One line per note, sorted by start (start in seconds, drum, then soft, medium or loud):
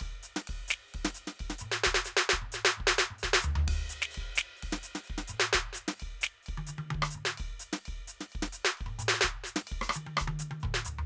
0.01 kick soft
0.01 ride bell medium
0.24 hi-hat pedal medium
0.24 ride soft
0.37 snare medium
0.44 hi-hat pedal soft
0.48 kick soft
0.48 ride medium
0.69 snare medium
0.69 hi-hat pedal medium
0.89 hi-hat pedal soft
0.95 kick soft
0.95 ride medium
1.05 snare medium
1.15 hi-hat pedal medium
1.15 ride soft
1.28 snare medium
1.35 hi-hat pedal soft
1.40 kick soft
1.40 ride bell medium
1.51 snare medium
1.59 hi-hat pedal medium
1.59 mid tom medium
1.72 snare medium
1.84 kick soft
1.84 snare loud
1.95 snare loud
2.05 snare soft
2.05 hi-hat pedal loud
2.17 snare loud
2.30 snare loud
2.34 kick soft
2.42 mid tom medium
2.53 snare medium
2.53 hi-hat pedal loud
2.66 snare loud
2.74 hi-hat pedal soft
2.78 kick soft
2.78 mid tom soft
2.88 snare loud
2.99 snare loud
2.99 hi-hat pedal loud
3.11 mid tom medium
3.19 hi-hat pedal soft
3.24 kick soft
3.24 snare medium
3.34 snare loud
3.42 floor tom loud
3.42 hi-hat pedal medium
3.56 floor tom loud
3.69 kick medium
3.69 ride loud
3.78 kick soft
3.90 hi-hat pedal loud
3.94 ride medium
4.03 snare medium
4.12 hi-hat pedal soft
4.12 ride bell medium
4.18 kick soft
4.36 snare loud
4.36 hi-hat pedal loud
4.57 hi-hat pedal soft
4.63 kick soft
4.63 ride medium
4.73 snare medium
4.84 hi-hat pedal medium
4.84 ride soft
4.96 snare medium
5.05 hi-hat pedal soft
5.05 ride bell soft
5.11 kick soft
5.19 snare medium
5.28 hi-hat pedal medium
5.28 mid tom medium
5.41 snare loud
5.54 kick soft
5.54 snare loud
5.74 snare soft
5.74 hi-hat pedal loud
5.89 snare medium
5.97 hi-hat pedal soft
5.97 ride bell medium
6.03 kick soft
6.22 snare medium
6.22 hi-hat pedal medium
6.44 hi-hat pedal soft
6.44 ride bell soft
6.49 kick soft
6.58 high tom medium
6.67 hi-hat pedal medium
6.67 high tom soft
6.79 high tom medium
6.91 kick soft
6.91 high tom loud
7.01 kick soft
7.01 cross-stick medium
7.11 hi-hat pedal medium
7.15 mid tom soft
7.26 snare medium
7.38 kick soft
7.38 ride bell medium
7.49 kick soft
7.60 hi-hat pedal loud
7.60 ride soft
7.74 snare medium
7.82 hi-hat pedal soft
7.82 ride bell medium
7.89 kick soft
8.08 hi-hat pedal medium
8.08 ride soft
8.21 snare medium
8.30 hi-hat pedal soft
8.30 ride bell soft
8.36 kick soft
8.43 snare medium
8.53 hi-hat pedal medium
8.53 ride soft
8.66 snare loud
8.78 kick soft
8.78 ride bell soft
8.87 mid tom medium
9.00 hi-hat pedal loud
9.00 mid tom medium
9.09 snare loud
9.15 snare medium
9.22 kick soft
9.22 snare loud
9.45 snare soft
9.45 hi-hat pedal medium
9.57 snare medium
9.68 hi-hat pedal soft
9.68 ride bell medium
9.72 kick soft
9.81 kick soft
9.81 cross-stick medium
9.90 cross-stick medium
9.94 hi-hat pedal loud
9.94 high tom medium
10.07 high tom medium
10.18 cross-stick loud
10.22 kick soft
10.28 kick soft
10.28 high tom loud
10.40 hi-hat pedal loud
10.40 high tom medium
10.52 high tom medium
10.61 hi-hat pedal soft
10.61 mid tom medium
10.66 kick soft
10.74 kick soft
10.74 snare medium
10.86 floor tom medium
10.86 hi-hat pedal loud
10.99 floor tom medium